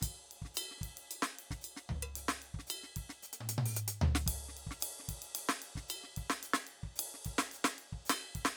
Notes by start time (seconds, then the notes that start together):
0.01 kick, snare, hi-hat pedal, ride bell
0.31 ride
0.42 kick, snare
0.55 hi-hat pedal, ride bell
0.71 snare
0.78 kick, snare
0.82 snare, ride
0.87 kick, snare
0.97 ride
1.11 hi-hat pedal, ride bell
1.22 snare
1.39 ride
1.51 kick, snare
1.61 hi-hat pedal, ride bell
1.77 snare
1.89 kick, floor tom
1.96 kick
2.03 percussion
2.16 hi-hat pedal, ride
2.29 snare
2.42 ride
2.54 kick
2.59 snare
2.67 hi-hat pedal, ride bell
2.84 snare
2.96 kick, ride
3.09 snare
3.23 hi-hat pedal
3.33 closed hi-hat
3.41 mid tom
3.49 closed hi-hat
3.58 mid tom
3.66 closed hi-hat
3.77 closed hi-hat, hi-hat pedal
3.88 closed hi-hat
4.02 floor tom
4.15 snare
4.27 kick, hi-hat pedal, ride
4.39 kick
4.49 snare
4.57 ride
4.67 kick
4.71 snare
4.80 hi-hat pedal, ride
5.00 snare
5.03 snare
5.06 kick, snare, ride
5.14 kick
5.22 ride
5.35 hi-hat pedal, ride
5.49 snare
5.62 ride
5.76 kick, snare
5.89 hi-hat pedal, ride bell
6.04 snare
6.17 kick, ride
6.30 snare
6.43 hi-hat pedal, ride
6.54 snare
6.67 ride
6.83 kick, snare
6.96 hi-hat pedal, ride
7.14 snare
7.25 kick, ride
7.39 snare
7.52 hi-hat pedal, ride
7.65 snare
7.78 ride
7.93 kick
8.05 hi-hat pedal
8.10 snare, ride bell
8.35 kick, ride
8.45 snare